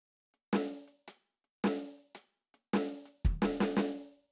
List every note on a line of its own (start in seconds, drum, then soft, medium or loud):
0.34 closed hi-hat soft
0.53 snare loud
0.53 closed hi-hat loud
0.88 closed hi-hat soft
1.08 closed hi-hat loud
1.44 closed hi-hat soft
1.64 snare loud
1.64 closed hi-hat loud
1.98 closed hi-hat soft
2.15 closed hi-hat loud
2.54 closed hi-hat soft
2.74 snare loud
2.74 closed hi-hat loud
3.06 closed hi-hat medium
3.25 kick medium
3.42 snare loud
3.60 snare loud
3.77 snare loud